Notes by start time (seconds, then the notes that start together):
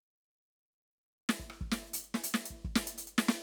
1.29 snare
1.40 kick
1.50 cross-stick
1.61 kick
1.72 snare
1.87 closed hi-hat
1.94 closed hi-hat
2.04 closed hi-hat
2.14 snare
2.24 closed hi-hat
2.34 snare
2.46 closed hi-hat
2.51 kick
2.65 kick
2.76 snare
2.87 closed hi-hat
2.98 closed hi-hat
3.07 closed hi-hat
3.18 snare
3.29 snare